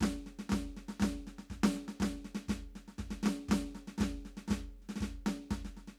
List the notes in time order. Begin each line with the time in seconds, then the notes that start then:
0.01 kick, snare
0.03 snare
0.27 snare
0.39 snare
0.50 kick, snare
0.52 snare
0.77 snare
0.89 snare
1.00 kick, snare
1.03 snare
1.27 snare
1.39 snare
1.50 kick, snare
1.64 snare
1.75 snare
1.89 snare
2.00 kick, snare
2.03 snare
2.25 snare
2.49 kick, snare
2.76 snare
2.88 snare
2.99 kick, snare
3.11 snare
3.23 snare
3.26 snare
3.49 kick, snare
3.52 snare
3.75 snare
3.88 snare
3.98 kick, snare
4.01 snare
4.26 snare
4.38 snare
4.48 kick, snare
4.51 snare
4.79 snare
4.83 snare
4.89 snare
4.96 snare
5.01 kick, snare
5.27 snare
5.51 kick, snare
5.65 snare
5.77 snare
5.88 snare